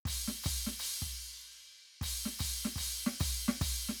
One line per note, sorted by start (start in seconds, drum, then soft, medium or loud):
0.06 kick medium
0.06 crash loud
0.28 snare medium
0.43 kick medium
0.43 crash loud
0.67 snare medium
0.71 snare soft
0.79 crash loud
1.02 kick medium
2.01 kick medium
2.01 crash loud
2.26 snare medium
2.39 kick medium
2.39 crash loud
2.65 snare medium
2.76 kick medium
2.76 crash loud
2.81 kick soft
3.07 snare medium
3.20 kick medium
3.20 crash loud
3.48 snare loud
3.61 kick medium
3.61 crash loud
3.89 snare medium